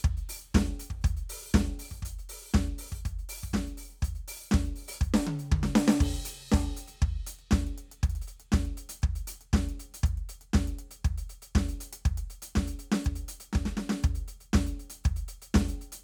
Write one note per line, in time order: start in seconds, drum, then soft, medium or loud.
0.01 kick loud
0.01 hi-hat pedal soft
0.06 closed hi-hat soft
0.17 closed hi-hat soft
0.29 open hi-hat loud
0.42 open hi-hat soft
0.51 kick loud
0.51 hi-hat pedal soft
0.55 snare loud
0.67 closed hi-hat soft
0.80 open hi-hat loud
0.91 kick medium
0.91 open hi-hat soft
1.02 kick loud
1.02 hi-hat pedal soft
1.06 closed hi-hat medium
1.17 closed hi-hat soft
1.30 open hi-hat loud
1.43 open hi-hat soft
1.50 kick loud
1.50 hi-hat pedal soft
1.54 snare loud
1.68 closed hi-hat soft
1.79 open hi-hat loud
1.91 kick soft
1.91 open hi-hat soft
1.98 hi-hat pedal soft
2.03 closed hi-hat loud
2.03 kick medium
2.19 open hi-hat soft
2.29 open hi-hat loud
2.41 open hi-hat soft
2.51 snare loud
2.51 hi-hat pedal soft
2.55 kick loud
2.68 closed hi-hat soft
2.79 open hi-hat loud
2.92 kick medium
2.92 open hi-hat soft
2.97 hi-hat pedal soft
3.05 closed hi-hat medium
3.05 kick medium
3.19 open hi-hat soft
3.29 open hi-hat loud
3.44 kick medium
3.51 snare loud
3.51 hi-hat pedal soft
3.67 closed hi-hat soft
3.78 open hi-hat medium
3.89 open hi-hat soft
4.02 closed hi-hat medium
4.02 kick loud
4.02 hi-hat pedal soft
4.15 closed hi-hat soft
4.28 open hi-hat loud
4.40 open hi-hat soft
4.49 snare loud
4.49 hi-hat pedal soft
4.54 kick loud
4.65 closed hi-hat soft
4.76 open hi-hat medium
4.88 open hi-hat loud
4.95 hi-hat pedal soft
5.01 closed hi-hat medium
5.01 kick loud
5.14 snare loud
5.27 high tom loud
5.39 open hi-hat medium
5.45 hi-hat pedal soft
5.52 kick loud
5.52 high tom loud
5.63 snare medium
5.76 snare loud
5.88 snare loud
6.01 kick loud
6.01 crash loud
6.14 closed hi-hat medium
6.25 closed hi-hat loud
6.38 open hi-hat soft
6.48 hi-hat pedal soft
6.52 kick loud
6.52 snare loud
6.64 closed hi-hat soft
6.77 closed hi-hat medium
6.88 closed hi-hat medium
7.02 closed hi-hat soft
7.02 kick loud
7.13 closed hi-hat soft
7.27 closed hi-hat loud
7.39 closed hi-hat soft
7.51 kick loud
7.51 snare loud
7.67 closed hi-hat soft
7.78 closed hi-hat medium
7.92 closed hi-hat medium
8.03 kick loud
8.03 closed hi-hat medium
8.10 closed hi-hat medium
8.16 closed hi-hat medium
8.22 closed hi-hat medium
8.28 closed hi-hat medium
8.40 closed hi-hat medium
8.52 kick loud
8.52 snare loud
8.65 closed hi-hat soft
8.78 closed hi-hat medium
8.89 closed hi-hat loud
9.03 kick loud
9.03 closed hi-hat soft
9.16 closed hi-hat medium
9.28 closed hi-hat loud
9.41 closed hi-hat medium
9.53 kick loud
9.53 snare loud
9.69 closed hi-hat medium
9.80 closed hi-hat medium
9.94 closed hi-hat medium
10.04 kick loud
10.04 closed hi-hat medium
10.18 closed hi-hat soft
10.29 closed hi-hat medium
10.41 closed hi-hat medium
10.54 kick loud
10.54 snare loud
10.68 closed hi-hat medium
10.79 closed hi-hat medium
10.91 closed hi-hat medium
11.05 kick loud
11.05 closed hi-hat medium
11.18 closed hi-hat medium
11.30 closed hi-hat medium
11.42 closed hi-hat medium
11.55 kick loud
11.55 snare loud
11.69 closed hi-hat medium
11.81 closed hi-hat loud
11.93 closed hi-hat loud
12.06 kick loud
12.06 closed hi-hat medium
12.18 closed hi-hat medium
12.30 closed hi-hat medium
12.42 closed hi-hat loud
12.56 kick loud
12.56 snare loud
12.68 closed hi-hat medium
12.79 closed hi-hat medium
12.92 snare loud
13.05 kick loud
13.05 closed hi-hat medium
13.16 closed hi-hat medium
13.29 closed hi-hat loud
13.40 closed hi-hat medium
13.53 kick loud
13.53 snare medium
13.66 snare medium
13.77 snare medium
13.90 snare loud
14.03 closed hi-hat medium
14.03 kick loud
14.15 closed hi-hat medium
14.28 closed hi-hat medium
14.41 closed hi-hat medium
14.54 kick loud
14.54 snare loud
14.67 closed hi-hat medium
14.80 closed hi-hat medium
14.90 closed hi-hat loud
15.04 closed hi-hat medium
15.04 kick loud
15.17 closed hi-hat medium
15.29 closed hi-hat medium
15.42 closed hi-hat medium
15.55 kick loud
15.55 snare loud
15.69 closed hi-hat medium
15.82 closed hi-hat medium
15.92 closed hi-hat loud